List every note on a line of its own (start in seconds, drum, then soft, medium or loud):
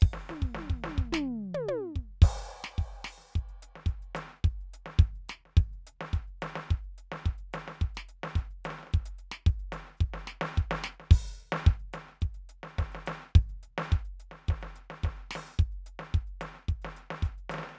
0.01 kick loud
0.01 ride medium
0.13 snare medium
0.29 snare soft
0.29 floor tom medium
0.42 kick medium
0.55 snare medium
0.55 floor tom medium
0.70 kick medium
0.84 snare medium
0.84 floor tom medium
0.98 kick medium
1.12 snare loud
1.12 floor tom loud
1.54 high tom loud
1.68 high tom loud
1.96 kick medium
2.22 open hi-hat loud
2.22 kick loud
2.22 crash medium
2.64 snare medium
2.78 kick medium
2.78 open hi-hat soft
2.92 open hi-hat soft
3.04 open hi-hat medium
3.04 snare medium
3.18 snare soft
3.32 kick medium
3.32 hi-hat pedal medium
3.37 closed hi-hat soft
3.49 closed hi-hat soft
3.62 closed hi-hat loud
3.76 snare soft
3.86 kick medium
3.86 closed hi-hat soft
4.02 closed hi-hat soft
4.15 closed hi-hat medium
4.15 snare medium
4.32 snare soft
4.44 kick medium
4.44 snare soft
4.44 closed hi-hat soft
4.61 closed hi-hat soft
4.74 closed hi-hat medium
4.86 snare soft
4.99 kick loud
4.99 closed hi-hat soft
5.15 closed hi-hat soft
5.29 closed hi-hat medium
5.29 snare medium
5.45 snare soft
5.57 kick loud
5.57 closed hi-hat soft
5.73 closed hi-hat soft
5.87 closed hi-hat loud
6.01 snare medium
6.13 kick medium
6.13 closed hi-hat soft
6.28 closed hi-hat soft
6.42 closed hi-hat medium
6.42 snare medium
6.56 snare medium
6.71 kick medium
6.71 closed hi-hat soft
6.84 closed hi-hat soft
6.98 closed hi-hat medium
7.12 snare medium
7.26 kick medium
7.26 closed hi-hat soft
7.38 closed hi-hat soft
7.53 closed hi-hat medium
7.53 snare medium
7.68 snare medium
7.80 kick medium
7.80 closed hi-hat soft
7.95 snare medium
7.95 closed hi-hat soft
8.09 closed hi-hat medium
8.23 snare medium
8.36 kick medium
8.36 closed hi-hat soft
8.51 closed hi-hat soft
8.65 closed hi-hat medium
8.65 snare medium
8.70 snare soft
8.79 snare soft
8.83 snare soft
8.87 snare soft
8.91 kick medium
8.91 snare soft
8.91 closed hi-hat soft
8.96 snare soft
9.00 snare soft
9.06 closed hi-hat medium
9.19 closed hi-hat soft
9.32 snare medium
9.46 kick loud
9.46 closed hi-hat soft
9.59 closed hi-hat soft
9.72 open hi-hat medium
9.72 snare medium
9.87 snare soft
9.97 kick medium
9.97 hi-hat pedal soft
10.14 snare medium
10.27 snare medium
10.41 snare loud
10.58 kick medium
10.71 snare loud
10.82 kick soft
10.82 snare loud
11.00 snare soft
11.11 open hi-hat loud
11.11 kick loud
11.52 snare loud
11.63 kick loud
11.63 hi-hat pedal soft
11.68 closed hi-hat soft
11.80 closed hi-hat soft
11.93 closed hi-hat medium
11.93 snare medium
12.09 snare soft
12.21 kick medium
12.21 closed hi-hat soft
12.34 closed hi-hat soft
12.49 closed hi-hat medium
12.63 snare soft
12.78 kick medium
12.78 snare medium
12.78 closed hi-hat soft
12.92 snare soft
12.92 closed hi-hat soft
13.04 open hi-hat medium
13.04 kick soft
13.04 snare medium
13.35 kick loud
13.35 closed hi-hat soft
13.49 closed hi-hat soft
13.63 closed hi-hat medium
13.78 snare loud
13.92 kick medium
13.92 closed hi-hat soft
14.05 closed hi-hat soft
14.20 closed hi-hat medium
14.31 snare soft
14.48 kick medium
14.48 snare soft
14.48 closed hi-hat soft
14.61 snare soft
14.61 closed hi-hat soft
14.76 closed hi-hat medium
14.76 kick soft
14.90 snare soft
15.03 kick medium
15.03 snare soft
15.03 closed hi-hat soft
15.16 closed hi-hat soft
15.29 open hi-hat medium
15.29 kick soft
15.29 snare medium
15.35 snare medium
15.56 kick medium
15.56 closed hi-hat soft
15.56 hi-hat pedal soft
15.72 closed hi-hat soft
15.86 closed hi-hat medium
15.99 snare medium
16.14 kick medium
16.14 closed hi-hat soft
16.27 closed hi-hat soft
16.41 closed hi-hat medium
16.41 snare medium
16.55 snare soft
16.69 kick medium
16.69 closed hi-hat soft
16.82 snare medium
16.82 closed hi-hat soft
16.97 closed hi-hat medium
17.11 snare medium
17.22 kick medium
17.22 closed hi-hat soft
17.38 closed hi-hat soft
17.50 closed hi-hat medium
17.50 snare medium
17.54 snare medium
17.58 snare medium
17.63 snare soft
17.69 snare soft
17.75 snare soft